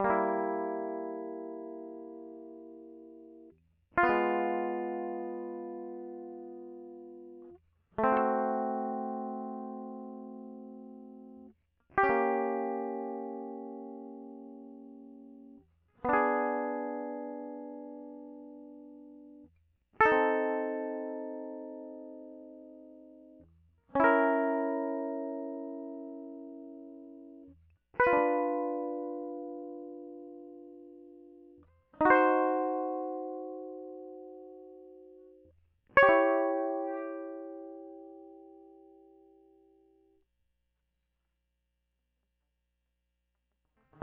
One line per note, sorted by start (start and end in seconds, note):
0.00 3.58 G3
0.06 3.54 A#3
0.11 3.54 E4
3.98 7.60 F4
4.04 7.54 B3
4.10 7.54 G#3
8.00 11.55 A3
8.04 11.52 C4
11.99 15.64 G4
12.04 15.64 C#4
12.11 15.63 A#3
16.06 19.50 B3
16.06 19.49 D4
16.14 18.73 G#4
20.01 23.19 A4
20.06 23.46 D#4
20.13 23.48 C4
23.96 27.56 C#4
24.01 27.48 E4
24.05 27.51 A#4
28.01 31.65 B4
28.08 31.65 F4
28.14 31.68 D4
32.02 35.54 D#4
32.06 35.52 F#4
32.11 35.54 C5
35.98 39.14 C#5
36.04 40.24 G4
36.09 40.23 E4